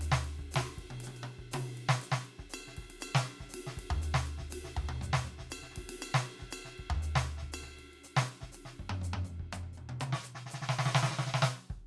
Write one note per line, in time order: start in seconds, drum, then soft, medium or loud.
0.01 hi-hat pedal loud
0.01 ride medium
0.12 snare loud
0.23 hi-hat pedal soft
0.23 ride medium
0.39 kick soft
0.51 hi-hat pedal medium
0.51 ride loud
0.56 snare loud
0.78 kick soft
0.78 ride medium
0.90 high tom medium
1.00 hi-hat pedal loud
1.00 ride medium
1.07 high tom medium
1.16 ride bell medium
1.23 hi-hat pedal soft
1.23 high tom medium
1.39 kick soft
1.51 hi-hat pedal loud
1.51 high tom loud
1.51 ride loud
1.75 hi-hat pedal soft
1.75 ride medium
1.89 snare loud
2.02 hi-hat pedal loud
2.02 ride medium
2.12 snare loud
2.23 hi-hat pedal soft
2.23 ride soft
2.38 kick soft
2.38 snare soft
2.50 hi-hat pedal medium
2.54 ride bell loud
2.68 snare soft
2.68 hi-hat pedal soft
2.77 kick soft
2.77 ride medium
2.82 snare soft
2.89 snare soft
2.89 ride medium
3.00 hi-hat pedal loud
3.00 ride bell loud
3.15 snare loud
3.22 hi-hat pedal soft
3.27 ride medium
3.40 kick soft
3.40 snare soft
3.49 hi-hat pedal medium
3.54 ride loud
3.67 snare medium
3.77 kick soft
3.77 ride medium
3.83 kick soft
3.90 floor tom loud
4.02 hi-hat pedal loud
4.02 ride medium
4.14 snare loud
4.24 hi-hat pedal medium
4.24 ride medium
4.38 kick soft
4.38 snare soft
4.50 hi-hat pedal medium
4.50 ride loud
4.64 snare soft
4.77 kick soft
4.77 floor tom loud
4.83 kick soft
4.89 high tom loud
5.01 hi-hat pedal loud
5.01 mid tom medium
5.13 snare loud
5.25 hi-hat pedal medium
5.25 mid tom soft
5.38 kick soft
5.38 snare soft
5.50 hi-hat pedal loud
5.50 ride bell loud
5.63 snare soft
5.71 snare soft
5.71 hi-hat pedal soft
5.76 kick soft
5.76 snare soft
5.76 ride medium
5.82 kick soft
5.82 snare soft
5.88 snare soft
5.88 ride loud
6.01 hi-hat pedal loud
6.01 ride bell loud
6.14 snare loud
6.24 hi-hat pedal soft
6.24 ride soft
6.39 kick soft
6.39 snare soft
6.51 hi-hat pedal loud
6.51 ride bell loud
6.65 snare soft
6.78 kick soft
6.78 ride soft
6.90 floor tom loud
7.02 hi-hat pedal loud
7.02 ride medium
7.16 snare loud
7.24 hi-hat pedal soft
7.38 snare soft
7.43 kick soft
7.52 hi-hat pedal medium
7.52 ride bell loud
7.63 snare soft
7.70 snare soft
7.75 snare soft
7.75 hi-hat pedal soft
7.79 snare soft
7.79 ride soft
7.85 snare soft
7.88 snare soft
7.93 ride soft
8.04 hi-hat pedal loud
8.04 ride medium
8.17 snare loud
8.22 cross-stick medium
8.22 hi-hat pedal medium
8.29 ride soft
8.41 kick soft
8.41 snare soft
8.52 hi-hat pedal medium
8.52 ride medium
8.65 snare medium
8.74 hi-hat pedal soft
8.79 kick soft
8.79 mid tom medium
8.90 mid tom loud
9.01 hi-hat pedal loud
9.01 mid tom medium
9.13 mid tom loud
9.25 hi-hat pedal medium
9.25 mid tom medium
9.40 kick soft
9.40 high tom soft
9.45 kick soft
9.53 hi-hat pedal loud
9.53 mid tom loud
9.63 high tom soft
9.73 hi-hat pedal soft
9.78 high tom medium
9.89 high tom loud
10.00 hi-hat pedal loud
10.00 high tom loud
10.13 snare loud
10.24 hi-hat pedal loud
10.35 snare medium
10.46 snare medium
10.50 snare medium
10.50 hi-hat pedal loud
10.62 snare medium
10.69 snare medium
10.79 snare loud
10.84 snare loud
10.84 hi-hat pedal medium
10.95 snare loud
11.03 snare loud
11.11 snare medium
11.19 snare loud
11.27 snare medium
11.34 snare loud
11.42 snare loud
11.53 snare soft
11.70 kick medium